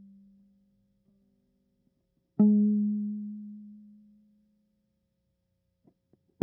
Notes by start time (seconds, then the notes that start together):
2.42 G#3